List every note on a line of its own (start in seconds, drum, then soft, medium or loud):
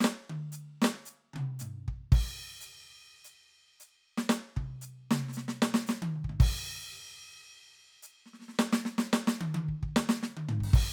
0.01 snare loud
0.01 hi-hat pedal medium
0.04 snare loud
0.30 high tom loud
0.52 hi-hat pedal medium
0.82 snare loud
0.84 snare loud
1.06 hi-hat pedal medium
1.34 mid tom medium
1.36 mid tom loud
1.59 floor tom medium
1.59 hi-hat pedal loud
1.88 kick medium
2.12 kick loud
2.12 crash loud
2.18 floor tom soft
2.18 hi-hat pedal soft
2.61 hi-hat pedal medium
3.25 hi-hat pedal medium
3.80 hi-hat pedal medium
4.18 snare loud
4.29 snare loud
4.29 hi-hat pedal medium
4.57 kick medium
4.57 mid tom loud
4.82 hi-hat pedal medium
5.11 snare loud
5.11 mid tom loud
5.29 snare soft
5.33 hi-hat pedal medium
5.37 snare medium
5.48 snare medium
5.62 snare loud
5.74 snare loud
5.87 snare loud
5.87 hi-hat pedal medium
6.02 high tom loud
6.16 mid tom soft
6.25 kick soft
6.30 floor tom medium
6.40 kick loud
6.40 crash loud
8.03 hi-hat pedal medium
8.26 snare soft
8.34 snare soft
8.40 snare soft
8.42 snare soft
8.48 snare soft
8.53 snare soft
8.59 snare loud
8.73 snare loud
8.85 snare medium
8.98 snare loud
9.13 snare loud
9.28 snare loud
9.41 hi-hat pedal soft
9.41 high tom loud
9.55 high tom loud
9.69 kick soft
9.83 kick medium
9.89 kick soft
9.96 snare loud
10.09 snare loud
10.23 snare medium
10.37 high tom loud
10.49 floor tom loud
10.61 kick soft
10.61 crash medium
10.74 kick loud
10.74 crash loud